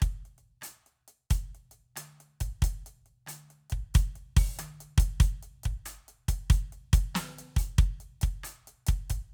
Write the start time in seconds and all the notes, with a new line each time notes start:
0.00 kick, cross-stick, closed hi-hat
0.25 closed hi-hat
0.38 closed hi-hat
0.61 closed hi-hat, cross-stick
0.86 closed hi-hat
1.08 closed hi-hat
1.30 closed hi-hat, kick
1.55 closed hi-hat
1.71 closed hi-hat
1.96 cross-stick, closed hi-hat, high tom
2.20 closed hi-hat
2.40 kick, closed hi-hat
2.62 kick, closed hi-hat
2.86 closed hi-hat
3.06 closed hi-hat
3.27 closed hi-hat, cross-stick, high tom
3.50 closed hi-hat
3.70 kick, closed hi-hat
3.94 closed hi-hat, kick
4.16 closed hi-hat
4.37 open hi-hat, kick
4.56 cross-stick, closed hi-hat, hi-hat pedal, high tom
4.80 closed hi-hat
4.98 kick, closed hi-hat
5.20 closed hi-hat, kick
5.43 closed hi-hat
5.63 kick, closed hi-hat
5.86 closed hi-hat, cross-stick
6.08 closed hi-hat
6.28 kick, closed hi-hat
6.50 closed hi-hat, kick
6.72 closed hi-hat
6.93 kick, closed hi-hat
7.15 closed hi-hat, snare, high tom
7.20 cross-stick
7.39 closed hi-hat
7.57 closed hi-hat, kick
7.78 closed hi-hat, kick
8.00 closed hi-hat
8.21 kick, closed hi-hat
8.44 closed hi-hat, cross-stick
8.67 closed hi-hat
8.87 kick, closed hi-hat
9.10 kick, closed hi-hat